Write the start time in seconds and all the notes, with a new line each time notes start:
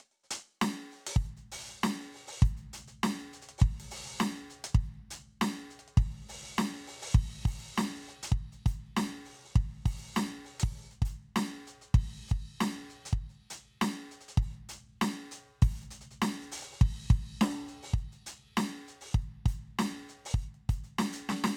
0.01 open hi-hat
0.11 open hi-hat
0.23 hi-hat pedal
0.30 closed hi-hat
0.46 closed hi-hat
0.61 snare
0.76 open hi-hat
0.92 open hi-hat
1.06 open hi-hat
1.16 kick
1.22 hi-hat pedal, open hi-hat
1.37 closed hi-hat
1.52 open hi-hat
1.68 open hi-hat
1.83 snare
1.99 open hi-hat
2.14 open hi-hat
2.27 open hi-hat
2.39 kick, hi-hat pedal
2.44 closed hi-hat
2.57 closed hi-hat
2.73 closed hi-hat
2.87 closed hi-hat
3.03 snare
3.19 closed hi-hat
3.33 closed hi-hat
3.42 closed hi-hat
3.49 closed hi-hat
3.58 open hi-hat, kick
3.80 open hi-hat
3.91 open hi-hat
4.05 open hi-hat
4.20 snare, hi-hat pedal
4.35 closed hi-hat
4.50 closed hi-hat
4.64 closed hi-hat
4.75 kick
4.81 hi-hat pedal, open hi-hat
4.94 closed hi-hat
5.10 closed hi-hat
5.27 closed hi-hat
5.41 snare
5.56 closed hi-hat
5.70 closed hi-hat
5.79 closed hi-hat
5.88 closed hi-hat
5.97 open hi-hat, kick
6.29 open hi-hat
6.43 open hi-hat
6.58 snare
6.73 open hi-hat
6.87 open hi-hat
7.02 open hi-hat
7.14 kick, crash
7.29 open hi-hat
7.45 open hi-hat, kick
7.63 open hi-hat
7.78 snare
8.07 open hi-hat, hi-hat pedal
8.23 closed hi-hat
8.32 kick
8.38 closed hi-hat
8.52 closed hi-hat
8.66 closed hi-hat, kick
8.86 closed hi-hat
8.96 snare
9.12 open hi-hat
9.25 open hi-hat
9.34 open hi-hat
9.44 open hi-hat
9.55 open hi-hat, kick
9.85 open hi-hat, kick
10.16 snare, hi-hat pedal
10.44 open hi-hat
10.60 kick, open hi-hat
10.72 kick, open hi-hat
10.90 closed hi-hat
11.02 closed hi-hat, kick
11.21 open hi-hat
11.36 snare
11.67 closed hi-hat
11.81 closed hi-hat
11.94 kick, crash
12.00 hi-hat pedal
12.11 closed hi-hat
12.28 closed hi-hat, kick
12.43 closed hi-hat
12.60 snare
12.89 closed hi-hat
13.05 closed hi-hat
13.13 kick
13.29 hi-hat pedal
13.35 closed hi-hat
13.50 closed hi-hat
13.65 closed hi-hat
13.81 snare
14.11 closed hi-hat
14.21 closed hi-hat
14.28 closed hi-hat
14.37 open hi-hat, kick
14.69 closed hi-hat
14.87 closed hi-hat
15.01 snare
15.31 closed hi-hat
15.45 closed hi-hat
15.62 open hi-hat, kick
15.71 open hi-hat
15.81 closed hi-hat
15.90 closed hi-hat
16.01 closed hi-hat
16.11 closed hi-hat
16.22 snare
16.31 open hi-hat
16.41 open hi-hat
16.52 open hi-hat
16.61 open hi-hat
16.72 open hi-hat
16.81 kick, crash
17.10 closed hi-hat, kick
17.25 closed hi-hat
17.41 snare
17.68 closed hi-hat
17.82 open hi-hat
17.93 closed hi-hat, kick, hi-hat pedal
18.12 closed hi-hat
18.26 closed hi-hat
18.42 closed hi-hat
18.57 snare
18.88 closed hi-hat
19.01 open hi-hat
19.14 kick
19.19 hi-hat pedal
19.30 closed hi-hat
19.46 closed hi-hat, kick
19.63 closed hi-hat
19.79 snare
20.09 closed hi-hat
20.25 open hi-hat
20.34 kick
20.41 kick, hi-hat pedal
20.54 closed hi-hat
20.69 closed hi-hat, kick
20.84 closed hi-hat
20.98 snare
21.12 open hi-hat
21.29 snare
21.44 snare